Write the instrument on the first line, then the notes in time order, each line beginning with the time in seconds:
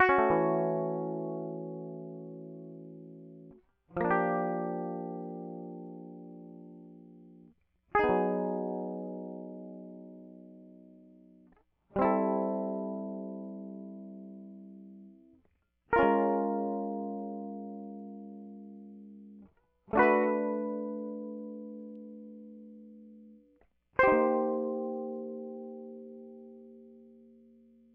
electric guitar
0.01 F#4
0.10 C#4
0.19 A3
0.32 E3
3.98 F3 A#3
4.05 D4
4.11 G4
7.96 G#4
8.00 D#4
8.05 B3
8.10 F#3
11.97 G3 C4
12.02 E4 A4
15.94 F4 A#4
16.00 C#4
16.04 G#3
19.94 A3 D4 F#4
20.00 B4
24.00 C5
24.04 G4
24.08 D#4
24.13 A#3